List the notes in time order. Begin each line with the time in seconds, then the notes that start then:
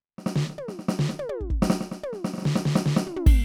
0.18 snare
0.26 snare
0.36 snare
0.50 snare
0.58 high tom
0.68 snare, hi-hat pedal
0.79 snare
0.89 snare
0.99 snare
1.09 snare
1.19 high tom
1.41 kick
1.50 kick
1.62 snare
1.70 snare
1.81 snare
1.91 snare
2.03 high tom
2.13 snare
2.24 snare
2.34 snare
2.38 snare
2.42 snare
2.45 snare
2.56 snare
2.65 snare
2.76 snare
2.86 snare
2.97 snare
3.06 floor tom
3.16 floor tom
3.26 kick, ride